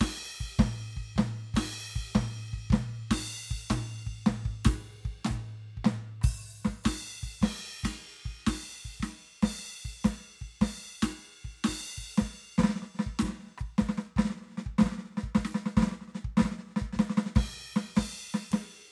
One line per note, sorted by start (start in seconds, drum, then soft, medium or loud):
0.00 kick medium
0.00 snare loud
0.00 crash loud
0.41 kick medium
0.59 kick loud
0.59 snare loud
0.59 mid tom loud
0.97 kick medium
1.16 kick medium
1.16 snare loud
1.16 mid tom loud
1.55 kick medium
1.55 snare loud
1.55 crash loud
1.96 kick medium
2.15 kick medium
2.15 snare loud
2.15 mid tom loud
2.54 kick medium
2.71 kick loud
2.71 snare loud
2.71 mid tom loud
3.11 kick medium
3.11 snare loud
3.11 crash loud
3.51 kick medium
3.71 kick medium
3.71 snare loud
3.71 mid tom loud
4.07 kick medium
4.27 kick soft
4.27 snare loud
4.27 mid tom loud
4.46 kick medium
4.65 kick loud
4.65 snare loud
4.65 ride loud
5.06 kick medium
5.25 snare loud
5.25 mid tom loud
5.31 kick medium
5.78 kick soft
5.85 snare loud
5.85 mid tom loud
5.98 kick soft
6.19 kick soft
6.19 cross-stick medium
6.24 open hi-hat loud
6.24 kick loud
6.24 cross-stick soft
6.65 kick soft
6.65 snare loud
6.84 kick medium
6.84 snare loud
6.84 crash loud
7.23 kick medium
7.42 kick medium
7.42 snare loud
7.42 crash loud
7.84 kick medium
7.84 snare loud
7.84 ride bell loud
8.26 kick medium
8.47 kick medium
8.47 snare loud
8.47 crash loud
8.85 kick soft
9.00 kick soft
9.00 snare loud
9.00 ride bell soft
9.43 kick soft
9.43 snare loud
9.43 crash loud
9.85 kick soft
10.05 kick medium
10.05 snare loud
10.05 ride bell medium
10.42 kick soft
10.62 kick medium
10.62 snare loud
10.62 crash medium
11.03 kick soft
11.03 snare loud
11.03 ride bell loud
11.45 kick soft
11.65 snare loud
11.65 crash loud
11.69 kick soft
11.98 kick soft
12.18 kick medium
12.18 snare loud
12.18 ride bell medium
12.58 kick medium
12.58 snare loud
12.64 snare loud
12.69 snare medium
12.76 snare medium
12.83 snare medium
12.95 snare soft
13.00 snare medium
13.07 kick medium
13.19 kick medium
13.19 snare loud
13.24 snare medium
13.29 snare medium
13.34 snare soft
13.39 snare soft
13.43 snare soft
13.47 snare soft
13.50 snare soft
13.53 snare soft
13.58 kick medium
13.58 cross-stick medium
13.79 kick medium
13.79 snare loud
13.89 snare medium
13.98 snare medium
14.17 kick medium
14.17 cross-stick medium
14.17 snare loud
14.25 snare medium
14.30 snare medium
14.37 snare soft
14.42 snare soft
14.50 snare soft
14.52 snare soft
14.54 snare soft
14.58 snare medium
14.67 kick medium
14.79 snare loud
14.81 kick medium
14.81 snare loud
14.86 snare medium
14.92 snare medium
14.99 snare medium
15.05 snare soft
15.11 snare soft
15.15 snare soft
15.18 snare medium
15.24 kick medium
15.35 kick medium
15.35 snare loud
15.45 snare medium
15.55 snare medium
15.66 snare medium
15.77 kick medium
15.77 snare loud
15.81 snare medium
15.83 snare loud
15.87 snare medium
15.92 snare medium
16.01 snare soft
16.08 snare soft
16.13 snare soft
16.15 snare medium
16.25 kick medium
16.38 snare loud
16.40 kick medium
16.40 snare loud
16.45 snare medium
16.52 snare medium
16.59 snare soft
16.63 snare soft
16.67 snare soft
16.70 snare soft
16.77 snare medium
16.82 kick medium
16.93 kick soft
16.93 snare medium
17.00 snare loud
17.10 snare medium
17.18 snare loud
17.26 snare medium
17.36 kick loud
17.36 snare loud
17.36 crash loud
17.76 snare loud
17.96 kick medium
17.96 snare loud
17.96 crash loud
18.35 snare medium
18.52 kick soft
18.52 snare loud
18.52 ride loud